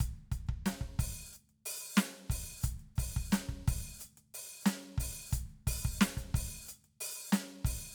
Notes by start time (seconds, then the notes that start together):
0.00 closed hi-hat, kick
0.32 closed hi-hat, kick
0.47 kick, closed hi-hat
0.66 closed hi-hat, snare
0.81 kick
0.99 open hi-hat, kick
1.33 hi-hat pedal
1.49 closed hi-hat
1.66 open hi-hat
1.96 closed hi-hat, snare, hi-hat pedal
2.30 open hi-hat, kick
2.61 closed hi-hat, kick, hi-hat pedal
2.79 closed hi-hat
2.96 open hi-hat, kick, hi-hat pedal
3.16 kick
3.31 closed hi-hat, snare, hi-hat pedal
3.49 kick, closed hi-hat
3.68 open hi-hat, kick
3.99 closed hi-hat, hi-hat pedal
4.17 closed hi-hat
4.34 open hi-hat
4.62 closed hi-hat, snare, hi-hat pedal
4.83 closed hi-hat
4.98 open hi-hat, kick
5.30 closed hi-hat, kick, hi-hat pedal
5.49 closed hi-hat
5.67 open hi-hat, kick
5.85 kick
5.98 closed hi-hat, snare, hi-hat pedal
6.17 closed hi-hat, kick
6.34 open hi-hat, kick
6.66 closed hi-hat, hi-hat pedal
6.84 closed hi-hat
7.00 open hi-hat
7.29 closed hi-hat, snare, hi-hat pedal
7.48 closed hi-hat
7.64 open hi-hat, kick, hi-hat pedal